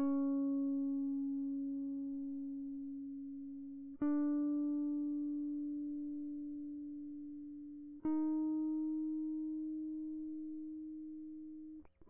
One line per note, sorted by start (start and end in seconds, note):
0.00 4.02 C#4
4.03 8.05 D4
8.06 11.81 D#4